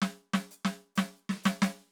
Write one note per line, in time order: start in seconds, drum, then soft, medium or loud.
0.02 snare loud
0.33 snare loud
0.51 hi-hat pedal medium
0.65 snare loud
0.95 snare loud
0.95 hi-hat pedal medium
1.16 hi-hat pedal soft
1.29 snare loud
1.43 snare loud
1.43 hi-hat pedal medium
1.62 snare loud